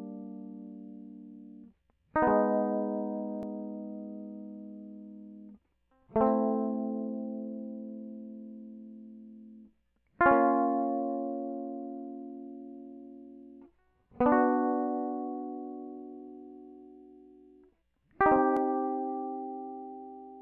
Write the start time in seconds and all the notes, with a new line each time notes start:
2.16 D#4
2.23 B3
2.28 G#3
6.17 A3
6.21 C4
6.27 E4
10.21 F4
10.26 C#4
10.32 A#3
14.21 B3
14.26 D4
14.32 F#4
18.21 G4
18.26 D#4
18.32 C4